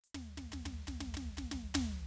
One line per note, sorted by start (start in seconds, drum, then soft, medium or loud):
0.04 hi-hat pedal medium
0.14 snare soft
0.14 floor tom soft
0.37 snare soft
0.37 floor tom soft
0.52 snare soft
0.52 floor tom medium
0.65 snare soft
0.65 floor tom medium
0.87 snare soft
0.87 floor tom soft
1.00 snare soft
1.00 floor tom medium
1.14 snare soft
1.14 floor tom medium
1.37 snare soft
1.37 floor tom soft
1.51 snare medium
1.51 floor tom soft
1.74 snare medium
1.74 floor tom medium